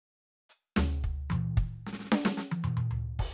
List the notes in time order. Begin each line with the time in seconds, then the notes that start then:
0.49 hi-hat pedal
0.76 snare, floor tom
1.04 kick
1.30 mid tom, high tom
1.56 kick, snare
1.86 snare
1.93 snare
1.99 snare
2.04 snare
2.10 snare
2.12 snare
2.25 snare
2.37 snare
2.51 high tom
2.64 mid tom
2.77 mid tom
2.91 floor tom
3.19 kick, crash